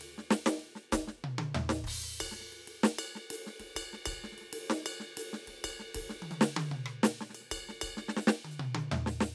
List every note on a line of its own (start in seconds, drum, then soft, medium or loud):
0.01 hi-hat pedal soft
0.01 ride medium
0.18 snare soft
0.31 snare loud
0.46 snare loud
0.59 ride soft
0.75 snare soft
0.92 kick soft
0.92 snare loud
0.92 hi-hat pedal loud
1.00 kick soft
1.08 snare soft
1.24 mid tom loud
1.38 high tom loud
1.55 floor tom loud
1.69 snare medium
1.84 kick soft
1.84 hi-hat pedal soft
1.84 crash loud
1.93 kick soft
2.04 cross-stick soft
2.20 kick soft
2.20 ride bell loud
2.32 snare soft
2.40 snare soft
2.52 ride medium
2.68 ride medium
2.83 snare loud
2.83 hi-hat pedal medium
2.99 ride bell loud
3.15 snare soft
3.30 hi-hat pedal medium
3.30 ride loud
3.47 snare soft
3.60 kick soft
3.60 snare soft
3.60 ride medium
3.76 kick soft
3.76 hi-hat pedal soft
3.76 ride bell loud
3.93 snare soft
4.06 kick soft
4.06 ride bell loud
4.13 kick soft
4.24 snare soft
4.32 snare soft
4.38 snare soft
4.38 ride medium
4.53 ride loud
4.63 hi-hat pedal soft
4.70 snare loud
4.86 ride bell loud
5.00 snare soft
5.17 hi-hat pedal medium
5.17 ride loud
5.33 snare medium
5.47 kick soft
5.47 snare soft
5.47 ride medium
5.64 kick soft
5.64 ride bell loud
5.79 snare soft
5.95 kick soft
5.95 ride loud
6.02 kick soft
6.10 snare soft
6.22 high tom medium
6.31 hi-hat pedal soft
6.31 high tom medium
6.41 snare loud
6.57 hi-hat pedal soft
6.57 high tom loud
6.71 mid tom medium
6.86 cross-stick medium
7.03 snare loud
7.03 hi-hat pedal loud
7.21 snare medium
7.30 snare soft
7.35 ride bell medium
7.40 snare soft
7.52 kick soft
7.52 ride bell loud
7.69 snare soft
7.82 kick soft
7.82 ride bell loud
7.97 snare medium
8.08 snare medium
8.17 snare medium
8.22 hi-hat pedal medium
8.27 snare loud
8.45 high tom medium
8.51 hi-hat pedal soft
8.60 mid tom loud
8.75 high tom loud
8.79 hi-hat pedal soft
8.92 floor tom loud
9.06 snare medium
9.21 snare loud